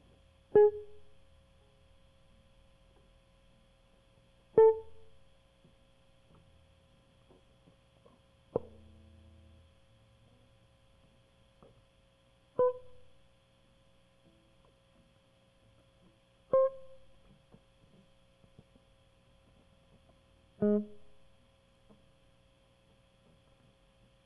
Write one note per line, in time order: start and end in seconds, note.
0.56 0.72 G#4
4.59 4.74 A4
8.57 8.64 A#4
12.60 12.73 B4
16.54 16.71 C5
20.63 20.81 G#3